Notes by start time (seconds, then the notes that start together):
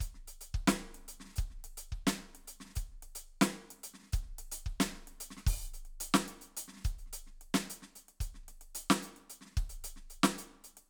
0.01 closed hi-hat, kick
0.15 snare
0.28 closed hi-hat
0.41 closed hi-hat
0.55 kick
0.68 closed hi-hat, snare
0.95 closed hi-hat
1.09 closed hi-hat
1.20 snare
1.25 snare
1.29 snare
1.32 snare
1.36 closed hi-hat, kick
1.51 snare
1.55 snare
1.59 snare
1.65 closed hi-hat
1.78 closed hi-hat
1.92 kick
2.07 closed hi-hat, snare
2.35 closed hi-hat
2.48 closed hi-hat
2.61 snare
2.66 snare
2.69 snare
2.76 closed hi-hat, kick
2.92 snare
3.03 closed hi-hat
3.16 closed hi-hat
3.42 closed hi-hat, snare
3.56 snare
3.71 closed hi-hat
3.84 closed hi-hat
3.94 snare
3.99 snare
4.03 snare
4.06 snare
4.13 closed hi-hat, kick
4.23 snare
4.26 snare
4.29 snare
4.39 closed hi-hat
4.52 closed hi-hat
4.66 kick
4.81 closed hi-hat, snare
4.89 snare
4.95 snare
4.98 snare
5.08 closed hi-hat
5.21 closed hi-hat
5.31 snare
5.37 cross-stick, snare
5.47 open hi-hat, kick
5.74 closed hi-hat
5.86 closed hi-hat
6.01 closed hi-hat
6.14 snare
6.29 closed hi-hat
6.42 closed hi-hat
6.57 closed hi-hat
6.68 snare
6.73 snare
6.77 snare
6.80 snare
6.85 closed hi-hat, kick, snare
6.91 snare
6.99 closed hi-hat
7.07 snare
7.13 closed hi-hat
7.27 snare
7.42 closed hi-hat
7.54 closed hi-hat, snare
7.70 closed hi-hat
7.83 snare
7.87 snare
7.96 closed hi-hat
8.09 closed hi-hat
8.21 closed hi-hat, kick
8.35 snare
8.44 kick
8.49 snare, closed hi-hat
8.62 closed hi-hat
8.75 closed hi-hat
8.91 snare
9.03 closed hi-hat
9.17 closed hi-hat
9.30 closed hi-hat
9.41 snare
9.46 snare
9.52 snare
9.55 kick, snare, closed hi-hat
9.62 snare
9.70 closed hi-hat
9.84 closed hi-hat
9.97 snare
10.10 closed hi-hat
10.24 closed hi-hat, snare
10.39 closed hi-hat
10.64 closed hi-hat
10.77 closed hi-hat